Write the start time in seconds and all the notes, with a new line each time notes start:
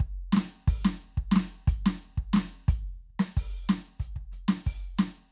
0.01 kick
0.33 snare
0.37 snare
0.68 open hi-hat, kick
0.86 snare
0.92 hi-hat pedal
1.18 kick
1.32 snare
1.37 snare
1.68 open hi-hat, kick
1.87 snare
1.98 hi-hat pedal
2.18 kick
2.34 snare
2.37 snare
2.69 closed hi-hat, kick
3.10 kick
3.20 snare
3.25 cross-stick
3.38 open hi-hat, kick
3.68 closed hi-hat, snare, hi-hat pedal
4.01 closed hi-hat, kick
4.17 kick
4.33 closed hi-hat, snare
4.49 snare
4.67 open hi-hat, kick
4.98 snare, closed hi-hat, hi-hat pedal